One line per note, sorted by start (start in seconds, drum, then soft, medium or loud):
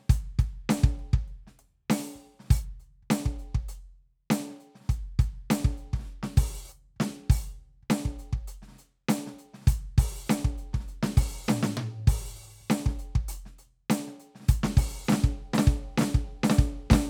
0.01 snare soft
0.04 snare soft
0.08 closed hi-hat loud
0.08 kick loud
0.08 snare soft
0.40 kick loud
0.40 closed hi-hat medium
0.70 closed hi-hat loud
0.70 snare loud
0.84 kick loud
1.00 closed hi-hat soft
1.14 kick loud
1.29 closed hi-hat soft
1.48 snare soft
1.52 snare soft
1.60 closed hi-hat soft
1.91 open hi-hat loud
1.91 snare loud
2.16 kick soft
2.16 snare soft
2.40 snare soft
2.45 snare soft
2.48 snare soft
2.51 open hi-hat loud
2.51 kick loud
2.51 snare soft
2.51 hi-hat pedal soft
2.81 closed hi-hat soft
3.03 kick soft
3.11 closed hi-hat loud
3.11 snare loud
3.27 kick medium
3.40 closed hi-hat soft
3.56 kick medium
3.60 crash soft
3.69 closed hi-hat medium
4.31 closed hi-hat loud
4.31 snare loud
4.50 snare soft
4.56 snare soft
4.61 closed hi-hat soft
4.76 snare soft
4.81 snare soft
4.85 snare soft
4.88 closed hi-hat medium
4.88 kick medium
4.88 snare soft
5.20 closed hi-hat medium
5.20 kick loud
5.51 closed hi-hat loud
5.51 snare loud
5.65 kick loud
5.71 snare soft
5.78 closed hi-hat soft
5.94 kick medium
5.94 snare soft
5.94 crash soft
5.99 snare soft
6.03 snare soft
6.05 snare soft
6.10 closed hi-hat soft
6.24 snare medium
6.38 open hi-hat loud
6.38 kick loud
6.69 hi-hat pedal medium
6.97 kick soft
6.97 snare loud
7.31 open hi-hat loud
7.31 kick loud
7.84 kick soft
7.91 open hi-hat loud
7.91 snare loud
7.91 hi-hat pedal medium
8.06 kick medium
8.20 closed hi-hat soft
8.34 kick medium
8.34 crash soft
8.38 ride soft
8.48 closed hi-hat medium
8.63 snare soft
8.69 snare soft
8.72 snare soft
8.75 snare soft
8.79 closed hi-hat soft
8.79 snare soft
9.10 closed hi-hat loud
9.10 snare loud
9.27 snare soft
9.34 kick soft
9.34 snare soft
9.39 closed hi-hat soft
9.54 snare soft
9.59 snare soft
9.62 snare soft
9.67 closed hi-hat loud
9.67 kick loud
9.67 snare soft
9.99 open hi-hat loud
9.99 kick loud
10.30 open hi-hat loud
10.30 snare loud
10.30 hi-hat pedal soft
10.45 kick medium
10.59 closed hi-hat soft
10.74 kick medium
10.74 snare soft
10.80 snare soft
10.84 snare soft
10.89 closed hi-hat soft
10.89 snare soft
11.04 snare loud
11.18 open hi-hat loud
11.18 kick loud
11.49 snare loud
11.49 hi-hat pedal medium
11.49 high tom loud
11.64 snare loud
11.78 high tom loud
12.08 open hi-hat loud
12.08 kick loud
12.62 kick soft
12.71 open hi-hat loud
12.71 snare loud
12.71 hi-hat pedal medium
12.87 kick medium
12.87 snare soft
13.00 closed hi-hat soft
13.16 kick loud
13.16 crash soft
13.29 closed hi-hat loud
13.46 snare soft
13.59 closed hi-hat medium
13.91 closed hi-hat loud
13.91 snare loud
14.08 snare soft
14.21 closed hi-hat soft
14.36 snare soft
14.41 snare soft
14.44 snare soft
14.49 closed hi-hat loud
14.49 kick loud
14.64 snare loud
14.78 open hi-hat loud
14.78 kick loud
15.09 snare loud
15.09 hi-hat pedal medium
15.13 snare loud
15.25 kick loud
15.54 snare loud
15.59 snare loud
15.68 kick loud
15.99 snare loud
16.02 snare loud
16.15 kick loud
16.44 snare loud
16.51 snare loud
16.59 kick loud
16.91 kick loud
16.91 snare loud
16.94 snare loud